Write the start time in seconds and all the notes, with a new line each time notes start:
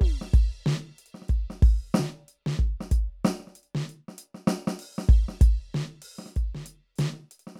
0.01 kick, crash
0.22 snare
0.34 kick, closed hi-hat
0.66 snare, hi-hat pedal
0.89 snare
0.97 closed hi-hat, hi-hat pedal
1.06 closed hi-hat
1.15 snare
1.22 snare
1.29 kick, closed hi-hat
1.50 snare
1.63 kick, open hi-hat
1.94 snare
1.99 snare
2.28 closed hi-hat
2.46 snare
2.59 kick
2.81 snare
2.92 closed hi-hat, kick
3.25 snare, hi-hat pedal
3.40 snare
3.47 snare
3.56 closed hi-hat
3.63 open hi-hat
3.75 snare
3.89 closed hi-hat
4.09 snare
4.14 hi-hat pedal
4.18 closed hi-hat
4.35 snare
4.48 snare, hi-hat pedal
4.68 snare
4.79 open hi-hat
4.98 snare
5.09 kick, crash
5.29 snare
5.41 closed hi-hat, kick
5.75 snare, hi-hat pedal
5.86 snare
6.02 open hi-hat
6.11 open hi-hat
6.19 snare
6.26 snare, hi-hat pedal
6.36 closed hi-hat, kick
6.55 snare
6.66 closed hi-hat
6.96 snare, closed hi-hat, hi-hat pedal
7.14 snare
7.31 closed hi-hat
7.40 closed hi-hat
7.47 snare
7.56 snare